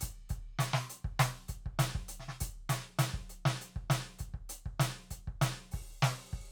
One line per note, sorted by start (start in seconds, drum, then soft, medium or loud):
0.01 closed hi-hat loud
0.01 kick medium
0.29 closed hi-hat medium
0.29 kick medium
0.59 closed hi-hat loud
0.59 snare loud
0.74 snare loud
0.90 closed hi-hat loud
1.05 kick medium
1.20 closed hi-hat loud
1.20 snare loud
1.49 closed hi-hat medium
1.49 kick medium
1.66 kick medium
1.79 closed hi-hat loud
1.79 snare loud
1.95 kick medium
2.09 closed hi-hat loud
2.20 snare soft
2.29 snare medium
2.41 closed hi-hat loud
2.41 kick medium
2.70 closed hi-hat loud
2.70 snare loud
2.99 closed hi-hat loud
2.99 snare loud
3.14 kick medium
3.30 closed hi-hat medium
3.46 snare loud
3.61 closed hi-hat medium
3.76 kick medium
3.90 closed hi-hat loud
3.90 snare loud
4.19 closed hi-hat medium
4.19 kick medium
4.34 kick medium
4.50 closed hi-hat loud
4.66 kick medium
4.80 closed hi-hat loud
4.80 snare loud
5.11 closed hi-hat medium
5.11 kick soft
5.28 kick medium
5.42 closed hi-hat loud
5.42 snare loud
5.72 open hi-hat medium
5.72 kick medium
6.03 open hi-hat medium
6.03 snare loud
6.33 kick medium